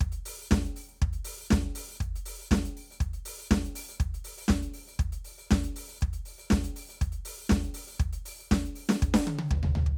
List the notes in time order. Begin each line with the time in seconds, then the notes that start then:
0.01 kick, closed hi-hat
0.12 closed hi-hat
0.26 open hi-hat
0.40 open hi-hat
0.48 snare, hi-hat pedal
0.52 kick
0.65 closed hi-hat
0.76 open hi-hat
0.89 open hi-hat
0.97 hi-hat pedal
1.02 kick, closed hi-hat
1.13 closed hi-hat
1.25 open hi-hat
1.39 open hi-hat
1.47 snare, hi-hat pedal
1.53 kick
1.65 closed hi-hat
1.76 open hi-hat
1.90 open hi-hat
1.97 hi-hat pedal
2.01 kick, closed hi-hat
2.16 closed hi-hat
2.26 open hi-hat
2.40 open hi-hat
2.47 hi-hat pedal
2.51 kick, snare
2.65 closed hi-hat
2.70 kick
2.77 open hi-hat
2.91 open hi-hat
2.96 hi-hat pedal
3.01 kick, closed hi-hat
3.14 closed hi-hat
3.26 open hi-hat
3.39 open hi-hat
3.47 hi-hat pedal
3.51 kick, snare
3.65 closed hi-hat
3.76 open hi-hat
3.89 open hi-hat
3.95 hi-hat pedal
4.00 kick, closed hi-hat
4.14 closed hi-hat
4.25 open hi-hat
4.38 open hi-hat
4.45 snare, hi-hat pedal
4.50 kick
4.63 closed hi-hat
4.74 open hi-hat
4.88 open hi-hat
4.96 kick, hi-hat pedal
5.01 closed hi-hat
5.13 closed hi-hat
5.25 open hi-hat
5.38 open hi-hat
5.48 kick, snare, hi-hat pedal
5.64 closed hi-hat
5.76 open hi-hat
5.88 open hi-hat
5.98 closed hi-hat, hi-hat pedal
6.03 kick
6.13 closed hi-hat
6.26 open hi-hat
6.38 open hi-hat
6.49 kick, snare, hi-hat pedal
6.64 closed hi-hat
6.76 open hi-hat
6.89 open hi-hat
6.99 closed hi-hat, kick, hi-hat pedal
7.12 closed hi-hat
7.25 open hi-hat
7.38 open hi-hat
7.47 snare, hi-hat pedal
7.52 kick
7.64 closed hi-hat
7.74 open hi-hat
7.87 open hi-hat
7.99 kick, closed hi-hat, hi-hat pedal
8.13 closed hi-hat
8.26 open hi-hat
8.39 open hi-hat
8.50 kick, snare, hi-hat pedal
8.65 closed hi-hat
8.76 open hi-hat
8.89 snare
8.99 closed hi-hat, kick, hi-hat pedal
9.14 snare
9.27 high tom
9.39 high tom
9.48 kick, floor tom, hi-hat pedal
9.63 floor tom
9.76 floor tom
9.87 kick